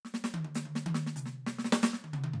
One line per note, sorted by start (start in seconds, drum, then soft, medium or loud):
0.05 snare soft
0.14 snare medium
0.24 snare medium
0.34 high tom loud
0.45 high tom medium
0.55 snare medium
0.55 hi-hat pedal medium
0.65 high tom medium
0.75 snare medium
0.86 high tom loud
0.95 snare medium
1.06 snare medium
1.16 hi-hat pedal medium
1.16 mid tom medium
1.26 snare medium
1.47 snare medium
1.59 snare medium
1.65 snare medium
1.72 snare loud
1.82 snare loud
1.82 hi-hat pedal medium
1.93 snare medium
2.04 high tom medium
2.13 mid tom loud
2.24 high tom loud
2.34 floor tom medium